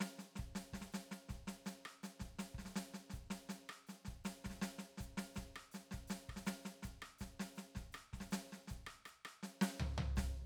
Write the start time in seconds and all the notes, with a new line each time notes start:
0.01 snare
0.19 snare, hi-hat pedal
0.36 kick, snare
0.55 snare, hi-hat pedal
0.73 kick, snare
0.82 snare
0.93 snare, hi-hat pedal
1.12 snare
1.29 kick, snare, hi-hat pedal
1.48 snare
1.66 snare, hi-hat pedal
1.86 cross-stick
2.04 snare, hi-hat pedal
2.20 kick, snare
2.39 snare, hi-hat pedal
2.55 kick, snare
2.66 snare
2.69 snare
2.76 snare, hi-hat pedal
2.94 snare
3.10 kick, snare, hi-hat pedal
3.31 snare
3.50 snare, hi-hat pedal
3.70 cross-stick
3.87 snare, hi-hat pedal
4.05 kick, snare
4.25 snare, hi-hat pedal
4.45 kick, snare
4.50 snare
4.62 snare, hi-hat pedal
4.79 snare
4.98 kick, snare, hi-hat pedal
5.18 snare
5.35 kick, snare, hi-hat pedal
5.56 cross-stick
5.72 snare, hi-hat pedal
5.92 kick, snare
6.08 snare, hi-hat pedal
6.29 kick, cross-stick
6.37 snare
6.46 snare, hi-hat pedal
6.66 snare
6.83 kick, snare, hi-hat pedal
7.03 cross-stick
7.19 kick, snare, hi-hat pedal
7.40 snare
7.56 snare, hi-hat pedal
7.76 kick, snare
7.93 cross-stick, hi-hat pedal
8.14 kick, snare
8.21 snare
8.31 snare, hi-hat pedal
8.53 snare
8.68 kick, snare, hi-hat pedal
8.87 cross-stick
9.06 cross-stick, hi-hat pedal
9.26 cross-stick
9.43 snare
9.62 snare
9.80 floor tom
9.99 floor tom
10.16 kick, snare, hi-hat pedal